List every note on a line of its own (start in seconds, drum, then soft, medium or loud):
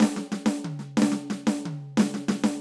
0.00 snare loud
0.02 snare loud
0.16 snare medium
0.32 snare loud
0.46 snare loud
0.65 high tom loud
0.79 snare medium
0.97 snare loud
1.02 snare loud
1.12 snare medium
1.30 snare loud
1.47 snare loud
1.65 high tom loud
1.97 snare loud
1.99 snare loud
2.14 snare medium
2.28 snare loud
2.44 snare loud